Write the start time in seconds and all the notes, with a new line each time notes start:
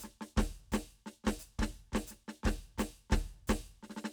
0.00 snare, hi-hat pedal
0.22 snare
0.37 kick, snare
0.73 kick, snare, hi-hat pedal
1.07 snare
1.25 kick, snare
1.28 snare
1.40 hi-hat pedal
1.60 kick, snare
1.63 snare
1.93 kick, snare
1.96 snare
2.08 snare, hi-hat pedal
2.29 snare
2.44 kick, snare
2.47 snare
2.79 kick, snare, hi-hat pedal
2.80 snare
3.11 snare
3.13 kick, snare
3.48 kick, snare, hi-hat pedal
3.84 snare
3.90 snare
3.97 snare
4.05 snare